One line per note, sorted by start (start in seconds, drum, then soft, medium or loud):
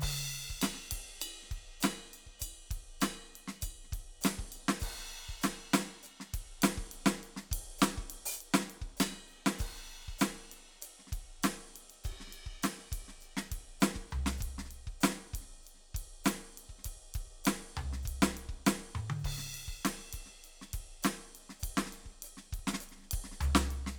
0.01 kick medium
0.01 hi-hat pedal medium
0.01 crash loud
0.50 kick soft
0.61 snare loud
0.61 hi-hat pedal medium
0.61 ride bell loud
0.74 snare soft
0.91 kick soft
0.91 ride loud
0.98 kick soft
1.20 hi-hat pedal medium
1.20 ride bell loud
1.42 snare soft
1.47 kick soft
1.47 snare soft
1.47 ride soft
1.58 kick soft
1.80 snare loud
1.80 hi-hat pedal medium
1.80 ride bell loud
2.13 ride bell soft
2.26 kick soft
2.37 snare soft
2.37 hi-hat pedal medium
2.41 kick soft
2.41 ride bell loud
2.52 kick soft
2.68 snare soft
2.70 kick medium
2.70 snare soft
2.70 ride medium
2.77 kick soft
3.00 snare loud
3.00 hi-hat pedal medium
3.00 ride bell loud
3.35 ride medium
3.48 snare medium
3.61 kick soft
3.61 hi-hat pedal medium
3.61 ride bell medium
3.69 kick soft
3.84 snare soft
3.92 kick soft
3.92 ride medium
3.99 kick soft
4.21 snare loud
4.21 hi-hat pedal medium
4.21 ride loud
4.38 kick soft
4.52 ride bell medium
4.68 snare loud
4.80 kick medium
4.80 hi-hat pedal medium
4.80 crash medium
4.88 kick soft
4.92 kick soft
4.98 snare soft
5.04 snare soft
5.10 snare soft
5.29 kick soft
5.41 snare loud
5.41 hi-hat pedal medium
5.41 ride bell medium
5.73 snare loud
5.73 ride bell medium
5.79 snare soft
6.03 hi-hat pedal medium
6.03 ride soft
6.20 snare soft
6.33 kick medium
6.33 ride medium
6.41 kick soft
6.62 snare loud
6.62 hi-hat pedal medium
6.62 ride loud
6.77 kick soft
6.83 kick soft
6.91 ride medium
7.06 snare loud
7.23 ride soft
7.36 snare medium
7.51 kick medium
7.51 ride loud
7.58 kick soft
7.62 kick soft
7.78 snare loud
7.78 hi-hat pedal medium
7.78 ride medium
7.97 kick soft
8.10 ride medium
8.25 open hi-hat loud
8.40 ride medium
8.54 snare loud
8.60 snare soft
8.70 ride medium
8.81 kick soft
8.97 snare loud
8.97 hi-hat pedal medium
8.97 ride bell loud
9.11 snare soft
9.28 hi-hat pedal soft
9.32 ride soft
9.46 snare loud
9.57 kick medium
9.57 snare soft
9.57 hi-hat pedal medium
9.57 crash medium
9.67 kick soft
9.71 kick soft
10.08 kick soft
10.19 snare loud
10.19 hi-hat pedal medium
10.19 ride loud
10.44 snare soft
10.52 ride medium
10.69 snare soft
10.81 hi-hat pedal medium
10.81 ride medium
10.99 snare soft
11.07 snare soft
11.12 kick medium
11.12 ride medium
11.21 kick soft
11.43 snare loud
11.43 hi-hat pedal medium
11.43 ride loud
11.58 snare soft
11.67 snare soft
11.76 ride medium
11.90 ride soft
12.04 kick soft
12.04 hi-hat pedal medium
12.04 ride medium
12.11 kick soft
12.20 snare soft
12.27 snare soft
12.33 ride medium
12.46 kick soft
12.62 snare medium
12.62 hi-hat pedal medium
12.62 ride loud
12.78 snare soft
12.92 kick soft
12.92 ride medium
12.97 kick soft
13.08 snare soft
13.20 hi-hat pedal soft
13.20 ride soft
13.37 snare medium
13.51 kick soft
13.51 ride medium
13.58 kick soft
13.80 snare loud
13.80 hi-hat pedal medium
13.80 ride medium
13.94 kick soft
13.94 snare soft
14.10 floor tom loud
14.10 hi-hat pedal soft
14.26 snare loud
14.38 kick medium
14.38 hi-hat pedal soft
14.42 ride medium
14.48 kick soft
14.58 snare medium
14.65 snare soft
14.71 ride medium
14.87 kick soft
15.01 snare loud
15.01 hi-hat pedal medium
15.01 ride loud
15.10 snare soft
15.33 kick soft
15.33 ride medium
15.40 kick soft
15.40 snare soft
15.50 snare soft
15.57 snare soft
15.63 hi-hat pedal soft
15.63 ride soft
15.74 snare soft
15.76 snare soft
15.94 kick soft
15.94 ride medium
16.01 kick soft
16.24 snare loud
16.24 hi-hat pedal medium
16.24 ride loud
16.34 snare soft
16.57 ride medium
16.69 kick soft
16.78 snare soft
16.83 kick soft
16.83 snare soft
16.83 hi-hat pedal soft
16.83 ride medium
16.87 snare soft
16.96 kick soft
17.14 kick medium
17.14 ride medium
17.27 kick soft
17.44 snare loud
17.44 hi-hat pedal medium
17.44 ride loud
17.57 snare soft
17.77 floor tom loud
17.93 snare soft
18.03 kick soft
18.03 hi-hat pedal soft
18.07 ride medium
18.12 kick soft
18.22 snare loud
18.37 ride medium
18.49 kick soft
18.66 snare loud
18.66 hi-hat pedal soft
18.66 ride loud
18.77 snare soft
18.95 mid tom loud
19.10 high tom loud
19.18 hi-hat pedal soft
19.24 kick medium
19.24 crash loud
19.30 kick soft
19.38 snare soft
19.45 snare soft
19.51 snare soft
19.51 ride medium
19.68 kick soft
19.85 snare medium
19.85 hi-hat pedal medium
19.85 ride loud
19.98 snare soft
20.13 kick soft
20.13 ride medium
20.26 snare soft
20.44 hi-hat pedal soft
20.44 ride soft
20.61 snare soft
20.73 kick soft
20.73 ride medium
20.80 kick soft
21.02 snare loud
21.02 hi-hat pedal medium
21.02 ride loud
21.35 ride medium
21.49 snare soft
21.59 kick soft
21.59 hi-hat pedal soft
21.59 ride loud
21.69 kick soft
21.72 kick soft
21.77 snare medium
21.82 cross-stick medium
21.86 snare soft
21.91 snare soft
21.91 ride medium
21.95 snare soft
21.99 snare soft
22.04 kick soft
22.04 snare soft
22.09 snare soft
22.22 hi-hat pedal medium
22.22 ride medium
22.37 snare soft
22.52 kick soft
22.52 ride medium
22.59 kick soft
22.67 snare loud
22.73 snare medium
22.80 hi-hat pedal medium
22.80 ride medium
22.89 snare soft
22.89 ride soft
22.95 snare soft
22.98 snare soft
23.02 snare soft
23.08 snare soft
23.08 ride loud
23.13 kick medium
23.21 kick soft
23.21 snare soft
23.26 kick soft
23.31 snare soft
23.40 floor tom loud
23.40 hi-hat pedal medium
23.55 snare loud
23.71 ride medium
23.86 snare medium